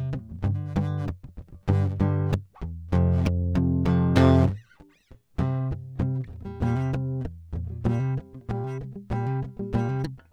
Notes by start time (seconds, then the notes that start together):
0.00 C3
0.46 G2
0.57 D3
0.78 G2 D3
1.70 G2 D3 G3
2.01 G2 D3 G3
2.94 F2 C3 F3
3.19 C3
3.28 F2
3.57 F2 C3 F3
3.87 F2 C3 F3
4.17 F2 C3 F3
5.41 C3 G3 C4
5.74 C3
6.02 C3 G3
6.23 A#2
6.47 A#2 G3
6.64 A#2 G3
6.78 C3
6.95 C3 G3
7.55 A#2
7.66 A#2
7.87 A#2 G3
8.03 C3
8.51 A#2 G3
8.66 C3
8.83 G3
8.98 G3
9.12 A#2 G3
9.29 C3
9.45 G3
9.62 G3
9.74 A#2 G3
9.92 C3